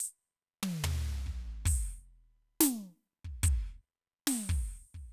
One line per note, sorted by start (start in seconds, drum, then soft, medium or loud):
0.01 open hi-hat loud
0.64 high tom loud
0.85 floor tom loud
1.27 kick soft
1.66 open hi-hat loud
1.66 kick medium
2.61 open hi-hat loud
2.61 snare loud
3.25 kick soft
3.44 open hi-hat loud
3.44 kick medium
4.28 open hi-hat loud
4.28 snare loud
4.50 kick medium
4.95 kick soft